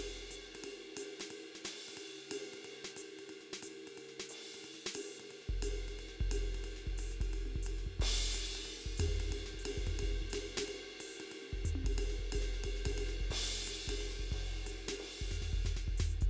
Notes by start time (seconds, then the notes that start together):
0.31 hi-hat pedal, ride
0.52 snare, ride
0.64 ride
0.97 hi-hat pedal, ride
1.20 snare, ride
1.30 ride
1.55 snare
1.64 snare, hi-hat pedal, ride
1.88 ride
1.97 ride
2.23 snare
2.31 hi-hat pedal, ride
2.53 ride
2.64 ride
2.74 snare
2.84 snare
2.96 hi-hat pedal, ride
3.19 ride
3.29 ride
3.40 snare
3.53 snare
3.62 hi-hat pedal, ride
3.87 ride
3.97 ride
4.08 snare
4.19 snare
4.29 hi-hat pedal, ride
4.54 ride
4.64 ride
4.74 snare
4.86 snare
4.94 hi-hat pedal, ride
5.19 ride
5.30 ride
5.41 snare
5.49 kick
5.62 hi-hat pedal, ride
5.88 ride
5.99 ride
6.08 snare
6.20 kick
6.31 hi-hat pedal, ride
6.54 ride
6.64 ride
6.76 snare
6.87 kick
6.98 hi-hat pedal, ride
7.11 snare
7.20 kick, ride
7.33 ride
7.45 high tom
7.55 kick
7.63 hi-hat pedal, ride
7.78 snare
7.86 kick
7.99 kick, ride
8.32 hi-hat pedal, ride
8.43 snare
8.55 ride
8.65 ride
8.77 high tom
8.86 kick
8.97 floor tom, hi-hat pedal, ride
9.08 kick
9.20 ride
9.31 kick, ride
9.46 snare
9.54 kick
9.59 hi-hat pedal
9.65 high tom, ride
9.77 kick
9.87 floor tom, ride
9.99 kick, ride
10.12 high tom
10.22 kick
10.30 hi-hat pedal, ride
10.34 snare
10.57 snare, ride
10.68 ride
10.89 snare
11.00 hi-hat pedal, ride
11.10 snare
11.20 ride
11.31 ride
11.42 high tom
11.53 kick
11.65 floor tom, hi-hat pedal
11.75 high tom
11.84 kick, ride
11.98 ride
12.09 snare
12.19 kick
12.32 kick, hi-hat pedal, ride
12.42 snare
12.54 snare
12.64 kick, ride
12.76 snare
12.85 kick, ride
12.98 ride
13.08 snare
13.20 kick
13.30 kick, ride
13.44 snare
13.66 hi-hat pedal, ride
13.87 kick, ride
14.00 ride
14.11 snare
14.19 kick
14.32 kick, ride
14.48 snare
14.66 hi-hat pedal, ride
14.88 snare, ride
14.99 ride
15.21 kick
15.31 snare, floor tom, hi-hat pedal
15.42 snare, floor tom
15.53 kick
15.65 snare, floor tom, hi-hat pedal
15.76 snare, floor tom
15.88 kick
15.97 snare, floor tom, hi-hat pedal
16.21 open hi-hat, kick